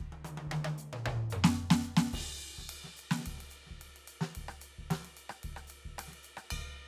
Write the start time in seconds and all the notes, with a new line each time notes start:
0.01 kick
0.08 kick
0.13 high tom
0.25 hi-hat pedal, high tom
0.38 high tom
0.47 kick
0.52 high tom
0.65 high tom
0.78 hi-hat pedal
0.93 mid tom
1.06 kick, mid tom
1.14 kick
1.31 hi-hat pedal, floor tom
1.45 snare
1.57 kick
1.71 snare
1.83 kick, hi-hat pedal
1.97 snare
2.14 kick, crash
2.21 kick, snare
2.27 kick
2.39 hi-hat pedal
2.58 kick, snare
2.66 kick, ride
2.84 snare
2.97 hi-hat pedal, ride
3.11 snare
3.19 snare
3.26 kick, ride
3.34 kick, snare
3.41 ride
3.51 hi-hat pedal, ride
3.67 snare
3.71 kick
3.82 ride
3.88 snare
3.94 snare, ride
4.08 hi-hat pedal, ride
4.21 snare
4.36 kick, ride
4.49 cross-stick
4.61 hi-hat pedal, ride
4.79 kick
4.91 snare, ride
5.02 snare, ride
5.17 hi-hat pedal, ride
5.30 cross-stick
5.44 kick, ride
5.51 kick
5.57 cross-stick
5.68 hi-hat pedal, ride
5.86 kick
5.99 cross-stick, ride
6.08 snare
6.14 ride
6.24 hi-hat pedal, ride
6.37 cross-stick
6.51 kick, ride bell
6.60 kick
6.64 kick